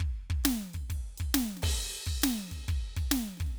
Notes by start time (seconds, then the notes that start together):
0.00 kick
0.30 kick
0.44 snare, percussion, ride
0.73 kick, ride bell
0.80 snare
0.89 kick, snare, ride
0.92 snare
0.94 snare
1.17 kick, ride bell
1.34 snare, ride
1.57 snare
1.62 kick, snare, crash
1.68 snare
1.73 snare
1.77 snare
1.84 snare
1.97 snare
2.06 kick, ride
2.22 snare, ride
2.48 kick, snare, ride
2.57 snare
2.61 snare
2.64 snare
2.67 kick, snare, ride
2.70 snare
2.96 kick, ride
3.11 snare, ride
3.37 kick, snare, ride
3.46 snare
3.50 snare
3.55 snare